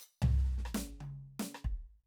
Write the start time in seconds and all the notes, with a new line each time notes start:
0.00 hi-hat pedal
0.22 floor tom
0.37 snare
0.44 snare
0.51 snare
0.58 snare
0.65 cross-stick
0.74 snare
1.00 closed hi-hat, high tom
1.39 snare
1.54 cross-stick
1.64 kick